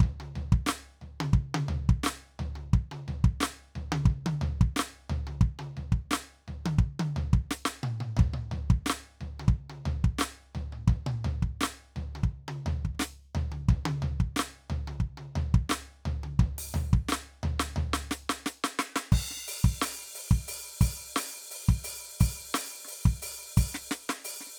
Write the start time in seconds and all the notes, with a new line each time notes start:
0.01 kick, floor tom
0.20 high tom
0.36 floor tom
0.53 kick
0.67 snare
0.69 snare
1.02 floor tom
1.21 high tom
1.34 kick
1.55 high tom
1.69 floor tom
1.89 kick
2.04 snare
2.07 snare
2.40 floor tom
2.56 high tom
2.74 kick, floor tom
2.92 high tom
3.08 floor tom
3.25 kick
3.41 snare
3.43 snare
3.76 floor tom
3.92 high tom
4.06 kick
4.10 floor tom
4.26 high tom
4.42 floor tom
4.61 kick
4.77 snare
4.80 snare
5.10 floor tom
5.27 high tom
5.41 kick
5.59 high tom
5.77 floor tom
5.92 kick
6.02 kick
6.11 snare
6.14 snare
6.48 floor tom
6.66 high tom
6.79 kick
7.00 high tom
7.17 floor tom
7.34 kick
7.51 snare
7.66 snare
7.84 mid tom
8.01 mid tom
8.17 kick, floor tom
8.34 mid tom
8.52 floor tom
8.70 kick
8.87 snare
8.90 snare
9.21 floor tom
9.40 high tom
9.48 kick
9.70 high tom
9.86 floor tom
10.05 kick
10.15 kick, snare
10.21 snare
10.55 floor tom
10.73 mid tom
10.88 kick, floor tom
11.07 mid tom
11.25 floor tom
11.43 kick
11.61 snare
11.64 snare
11.96 floor tom
12.16 high tom
12.24 kick
12.49 high tom
12.66 floor tom
12.85 kick
12.95 kick
13.00 snare
13.02 snare
13.35 floor tom
13.52 high tom
13.69 kick, floor tom
13.86 high tom
14.03 floor tom
14.20 kick
14.37 snare
14.40 snare
14.70 floor tom
14.88 high tom
15.00 kick
15.18 high tom
15.36 floor tom
15.55 kick
15.70 snare
15.72 snare
16.06 floor tom
16.24 high tom
16.40 kick, floor tom
16.59 closed hi-hat
16.74 floor tom
16.93 kick
17.09 snare
17.13 snare
17.44 floor tom
17.60 snare
17.76 floor tom
17.94 snare
18.12 snare
18.30 snare
18.46 snare
18.64 snare
18.79 snare
18.96 snare
19.12 kick, crash
19.31 snare
19.37 snare
19.48 open hi-hat
19.65 kick
19.82 open hi-hat, snare
20.15 open hi-hat
20.31 kick
20.48 open hi-hat
20.81 open hi-hat, kick
21.16 open hi-hat, snare
21.51 open hi-hat
21.69 kick
21.84 open hi-hat
22.20 open hi-hat, kick
22.55 open hi-hat, snare
22.85 open hi-hat, snare
23.06 kick
23.22 open hi-hat
23.57 open hi-hat, kick
23.75 snare
23.91 snare
24.10 snare
24.25 open hi-hat
24.41 snare
24.47 snare